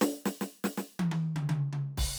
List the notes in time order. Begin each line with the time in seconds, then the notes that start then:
0.01 snare
0.26 snare
0.41 snare
0.64 snare
0.77 snare
0.99 high tom
1.11 high tom
1.36 mid tom
1.49 mid tom
1.73 mid tom
1.97 kick, crash